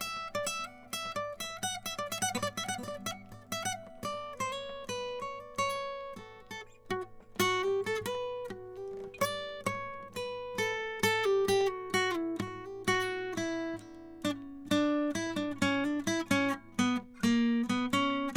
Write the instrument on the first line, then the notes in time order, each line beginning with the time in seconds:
acoustic guitar
0.03 E5
0.36 D5
0.48 E5
0.66 F#5
0.95 E5
1.18 D5
1.42 E5
1.65 F#5
1.87 E5
2.00 D5
2.13 E5
2.24 F#5
2.44 D5
2.59 F5
2.71 F#5
2.89 D5
3.08 F5
3.34 D5
3.53 E5
3.67 F#5
3.77 E5
4.05 D5
4.42 C5
4.54 C#5
4.91 B4
5.21 C#5
5.33 D5
5.60 C#5
6.18 A4
6.52 A4
6.92 F#4
7.41 F#4
7.59 G4
7.88 A4
8.07 B4
8.52 F#4
8.78 G4
9.23 D5
9.68 C#5
10.18 B4
10.60 A4
11.05 A4
11.27 G4
11.50 G4
11.69 F#4
11.95 F#4
12.12 E4
12.41 F#4
12.66 G4
12.89 F#4
13.39 E4
13.76 D4 E4
14.26 D4
14.73 D4
15.17 E4
15.38 D4
15.63 C#4
15.86 D4
16.09 E4
16.32 C#4
16.80 B3
17.25 A#3
17.71 B3
17.95 C#4